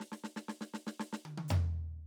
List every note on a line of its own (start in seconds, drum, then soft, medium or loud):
0.01 snare soft
0.12 snare soft
0.24 snare soft
0.36 snare soft
0.48 snare soft
0.61 snare soft
0.74 snare soft
0.87 snare medium
0.99 snare medium
1.13 snare medium
1.25 high tom medium
1.37 closed hi-hat soft
1.37 high tom medium
1.48 floor tom loud
1.48 hi-hat pedal medium